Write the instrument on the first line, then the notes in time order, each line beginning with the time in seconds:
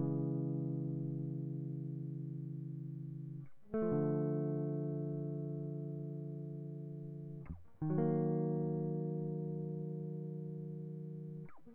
electric guitar
0.00 C#3 E3
3.75 A3
3.83 F3
3.93 D3
7.83 D#3
7.91 F#3
7.99 A#3